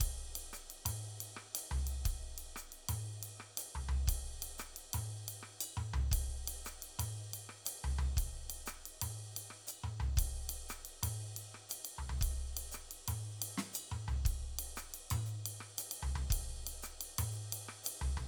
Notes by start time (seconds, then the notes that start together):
0.01 kick, ride
0.36 ride
0.53 cross-stick, hi-hat pedal
0.71 ride
0.86 mid tom, ride
1.21 ride
1.37 cross-stick
1.55 hi-hat pedal, ride
1.72 floor tom
1.87 ride
2.06 kick, ride
2.38 ride
2.56 cross-stick, hi-hat pedal
2.73 ride
2.89 mid tom, ride
3.23 ride
3.40 cross-stick
3.58 hi-hat pedal, ride
3.76 floor tom
3.89 floor tom
4.08 kick, ride
4.43 ride
4.59 cross-stick, hi-hat pedal
4.77 ride
4.94 mid tom, ride
5.29 ride
5.43 cross-stick
5.61 hi-hat pedal, ride bell
5.77 mid tom
5.94 floor tom
6.12 kick, ride
6.48 ride
6.66 cross-stick, hi-hat pedal
6.83 ride
6.99 mid tom, ride
7.34 ride
7.50 cross-stick
7.66 hi-hat pedal, ride
7.84 floor tom
7.99 floor tom
8.17 kick, ride
8.50 ride
8.67 cross-stick, hi-hat pedal
8.86 ride
9.02 mid tom, ride
9.37 ride
9.51 cross-stick
9.67 hi-hat pedal, ride bell
9.84 mid tom
10.00 floor tom
10.16 kick, hi-hat pedal, ride
10.50 ride
10.69 cross-stick, hi-hat pedal
10.85 ride
11.03 mid tom, ride
11.37 ride
11.55 cross-stick
11.70 hi-hat pedal, ride
11.85 ride
11.99 kick, floor tom
12.10 floor tom
12.19 kick, hi-hat pedal
12.23 ride
12.57 ride
12.72 cross-stick, hi-hat pedal
12.92 ride
13.08 mid tom, ride
13.42 ride
13.58 snare
13.74 hi-hat pedal, ride bell
13.92 mid tom
14.08 floor tom
14.26 kick, ride
14.59 ride
14.77 cross-stick, hi-hat pedal
14.94 ride
15.11 mid tom, ride bell
15.26 hi-hat pedal
15.46 ride
15.61 cross-stick
15.78 hi-hat pedal, ride
15.92 ride
16.03 kick, floor tom
16.16 floor tom
16.31 kick, ride
16.67 ride
16.83 cross-stick, hi-hat pedal
17.01 ride
17.19 mid tom, ride
17.32 hi-hat pedal
17.53 ride
17.69 cross-stick
17.84 hi-hat pedal, ride
18.02 floor tom
18.18 floor tom